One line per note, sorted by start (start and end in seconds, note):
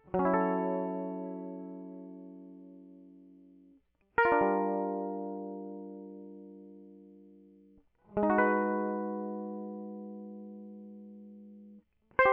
0.15 3.75 F#3
0.19 3.81 C#4
0.25 3.77 E4
0.34 3.14 A4
4.18 7.82 A#4
4.25 7.80 F4
4.32 7.85 D4
4.42 7.83 G3
8.18 11.82 G#3
8.23 11.87 D#4
8.30 11.76 F#4
8.38 11.81 B4
12.11 12.18 E5
12.19 12.33 C5
12.26 12.33 G4